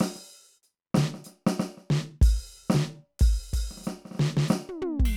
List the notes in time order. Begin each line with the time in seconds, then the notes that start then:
0.00 open hi-hat, snare
0.15 snare
0.63 hi-hat pedal
0.94 snare
0.97 snare
1.14 snare
1.24 snare, hi-hat pedal
1.47 snare
1.59 snare
1.77 snare
1.90 snare
2.21 open hi-hat, kick
2.70 snare
2.74 snare
3.19 open hi-hat, kick
3.53 open hi-hat, kick
3.71 snare
3.77 snare
3.81 snare, hi-hat pedal
3.87 snare
4.05 snare
4.11 snare
4.15 snare
4.19 snare
4.37 snare
4.48 snare, hi-hat pedal
4.68 floor tom
4.81 floor tom
4.99 kick
5.05 ride